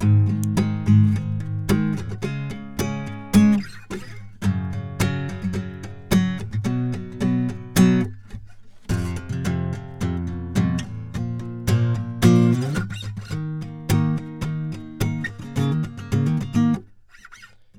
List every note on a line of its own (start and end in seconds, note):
0.01 0.57 G#2
0.01 0.28 D#3
0.01 0.25 G#3
0.27 0.58 D#3
0.27 0.57 G#3
0.58 0.77 G#2
0.58 0.87 D#3
0.58 0.86 G#3
0.87 1.16 G#2
0.87 1.17 D#3
0.87 1.10 G#3
1.17 1.39 G#2
1.17 1.41 D#3
1.17 1.27 G#3
1.41 1.68 G#2
1.41 1.69 D#3
1.70 1.95 G#2
1.70 2.01 D#3
1.70 1.98 G#3
2.23 2.51 C#3
2.23 2.51 G#3
2.23 2.53 C#4
2.51 2.79 C#3
2.51 2.61 G#3
2.80 3.08 C#3
2.80 2.89 G#3
2.80 3.33 C#4
3.08 3.15 C#3
3.35 3.61 G#3
3.35 3.64 C#4
4.43 4.74 F#2
4.43 4.72 C#3
4.74 4.98 F#2
4.74 5.00 C#3
4.74 4.96 F#3
5.01 5.30 F#2
5.01 5.30 C#3
5.01 5.28 F#3
5.30 5.45 F#2
5.30 5.42 C#3
5.30 5.37 F#3
5.43 5.54 F#2
5.43 5.52 C#3
5.43 5.55 F#3
5.55 5.84 F#2
5.55 5.83 C#3
5.55 5.73 F#3
5.84 6.17 F#2
5.84 6.07 C#3
5.84 6.11 F#3
6.12 6.42 C#3
6.12 6.44 F#3
6.65 6.94 B2
6.65 6.82 F#3
6.65 6.93 B3
6.94 7.10 B2
6.94 7.19 F#3
6.94 7.20 B3
7.21 7.50 B2
7.21 7.48 F#3
7.21 7.50 B3
7.50 7.77 B2
7.50 7.76 F#3
7.50 7.77 B3
7.77 8.09 B2
7.77 8.07 F#3
7.77 8.06 B3
8.90 9.18 F2
9.18 9.33 F2
9.30 9.46 F2
9.30 9.46 C3
9.46 9.74 F2
9.46 9.74 C3
9.74 10.02 F2
9.74 10.02 C3
10.02 10.29 F2
10.02 10.21 C3
10.28 10.56 F2
10.28 10.47 B2
10.56 10.85 F2
10.56 10.87 B2
11.15 11.39 A#2
11.15 11.39 F3
11.40 11.68 A#2
11.40 11.67 F3
11.68 11.96 A#2
11.68 11.94 F3
11.68 11.96 A#3
11.96 12.09 A#2
11.96 12.12 F3
11.96 12.21 A#3
12.23 12.77 A#2
12.23 12.61 F3
12.23 12.61 A#3
12.23 12.57 D4
13.32 13.63 D#3
13.62 13.90 D#3
13.62 13.89 A#3
13.90 14.19 D#3
13.90 14.17 A#3
13.90 14.43 D#4
14.17 14.41 D#3
14.17 14.40 A#3
14.42 14.73 D#3
14.42 14.72 A#3
14.42 15.00 D#4
14.73 14.83 D#3
14.73 15.00 A#3
15.01 15.27 D#3
15.01 15.24 A#3
15.01 15.28 D#4
15.26 15.40 A#3
15.40 15.57 C#3
15.40 15.55 A#3
15.57 15.73 C#3
15.57 15.82 A#3
15.57 15.69 D#4
15.73 15.84 D#3
15.84 15.97 C#3
15.84 15.96 A#3
15.99 16.10 A#3
16.13 16.20 C#3
16.13 16.44 A#3
16.21 16.28 C#3
16.29 16.41 D#3
16.43 16.54 C#3
16.55 16.81 D#3
16.55 16.65 A#3
16.65 16.81 A#3